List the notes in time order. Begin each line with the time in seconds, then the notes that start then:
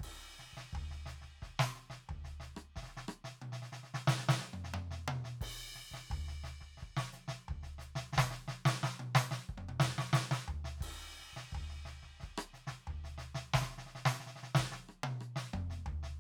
0.01 kick, crash
0.38 snare, hi-hat pedal
0.54 kick
0.58 snare
0.73 kick, floor tom
0.91 snare
1.06 snare, hi-hat pedal
1.22 kick, snare
1.43 kick, snare
1.60 snare
1.75 snare, hi-hat pedal
1.90 kick, snare
2.10 kick, floor tom
2.25 snare
2.41 snare, hi-hat pedal
2.56 kick, cross-stick
2.76 kick, snare
2.83 snare
2.89 snare
2.97 snare
3.09 cross-stick
3.25 snare
3.42 high tom
3.53 snare
3.63 snare
3.73 snare
3.84 snare
3.95 snare
4.08 snare
4.20 snare
4.29 snare
4.42 snare
4.54 mid tom
4.65 snare
4.74 mid tom
4.91 snare
5.08 high tom
5.25 snare
5.42 kick, snare, crash
5.51 snare
5.76 snare
5.92 kick, snare
6.11 kick, floor tom
6.28 snare
6.44 snare, hi-hat pedal
6.61 kick, snare
6.78 snare
6.83 kick
6.97 snare
7.13 snare, hi-hat pedal
7.29 kick, snare
7.49 kick, floor tom
7.63 snare
7.79 snare, hi-hat pedal
7.96 snare
8.13 kick, snare
8.18 snare
8.31 snare
8.48 snare
8.66 snare
8.84 snare
9.00 high tom
9.16 snare
9.32 snare
9.50 kick
9.58 kick, mid tom
9.69 high tom
9.80 snare
9.99 snare
10.14 snare
10.32 snare
10.48 floor tom
10.65 snare
10.78 kick, snare
10.83 snare, crash
10.89 snare
11.17 snare, hi-hat pedal
11.33 kick, snare
11.53 kick, floor tom
11.70 snare
11.86 snare, hi-hat pedal
12.03 kick, snare
12.21 kick, snare
12.38 cross-stick
12.54 snare, hi-hat pedal
12.68 kick, snare
12.88 kick, floor tom
13.05 snare
13.18 snare, hi-hat pedal
13.35 snare
13.54 kick, snare
13.62 kick, snare
13.71 snare
13.79 snare
13.87 snare
13.96 snare
14.06 snare
14.13 snare
14.21 snare
14.27 snare
14.36 snare
14.44 snare
14.55 snare
14.60 kick
14.66 kick
14.72 snare
14.89 cross-stick
15.04 high tom
15.21 cross-stick
15.37 snare
15.54 kick, mid tom
15.71 snare
15.87 kick, floor tom
16.04 snare